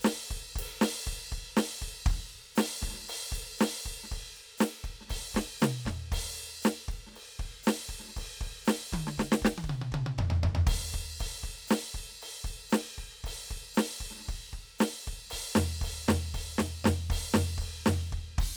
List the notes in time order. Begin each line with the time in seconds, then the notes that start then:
0.01 snare, hi-hat pedal
0.05 crash
0.30 kick, crash
0.55 kick, crash
0.81 snare, crash
1.06 kick, crash
1.32 kick, crash
1.57 snare, crash
1.81 kick, crash
2.06 kick, crash
2.55 snare, hi-hat pedal, crash
2.81 kick, snare
2.86 snare
2.90 snare
2.94 snare
2.97 snare
3.03 snare
3.07 snare, crash
3.32 kick, crash
3.58 snare, hi-hat pedal
3.63 crash
3.85 kick, crash
4.03 snare
4.11 kick, crash
4.37 crash
4.58 snare, hi-hat pedal, crash
4.84 kick, crash
5.01 snare
5.05 snare
5.08 kick, snare, crash
5.10 snare
5.18 snare
5.34 kick, snare, crash
5.60 snare, hi-hat pedal, mid tom
5.85 kick, snare, floor tom
6.12 kick, crash
6.37 crash
6.62 snare, hi-hat pedal, crash
6.88 kick, crash
7.06 snare
7.10 snare
7.13 snare
7.15 snare, crash
7.39 kick, crash
7.63 hi-hat pedal
7.67 snare, crash
7.89 kick, crash
7.99 snare
8.03 snare
8.06 snare
8.09 snare
8.16 kick, snare, crash
8.41 kick, crash
8.65 snare, hi-hat pedal, crash
8.92 kick, high tom
9.07 snare
9.17 kick, snare
9.32 snare
9.42 kick, snare
9.58 high tom
9.64 kick
9.69 mid tom
9.81 mid tom
9.92 kick, mid tom
10.06 mid tom
10.18 kick, floor tom
10.30 floor tom
10.43 kick, floor tom
10.55 floor tom
10.67 kick, crash
10.94 kick
11.20 kick, crash
11.42 kick, crash
11.67 snare, hi-hat pedal
11.72 crash
11.94 kick, crash
12.11 snare
12.22 crash
12.44 kick, crash
12.69 snare, hi-hat pedal
12.74 crash
12.98 kick, crash
13.24 kick, crash
13.50 kick, crash
13.74 snare, hi-hat pedal
13.79 crash
14.00 kick, crash
14.11 snare
14.15 snare
14.18 snare
14.20 snare
14.24 snare
14.25 kick, snare
14.29 crash
14.53 kick
14.78 snare, hi-hat pedal, crash
15.07 kick
15.26 snare
15.30 kick, crash
15.55 snare, floor tom
15.81 kick, crash
16.08 snare, floor tom
16.34 kick, crash
16.58 snare, floor tom
16.84 snare, floor tom
17.10 kick, crash
17.34 snare, floor tom
17.58 kick, crash
17.86 snare, floor tom
18.12 kick
18.38 kick, crash